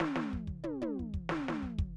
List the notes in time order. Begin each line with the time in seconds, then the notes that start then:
0.00 snare, floor tom
0.16 snare, floor tom
0.33 kick
0.47 kick
0.63 floor tom, high tom
0.81 floor tom, high tom
0.99 kick
1.14 kick
1.29 snare, floor tom
1.48 snare, floor tom
1.62 kick
1.78 kick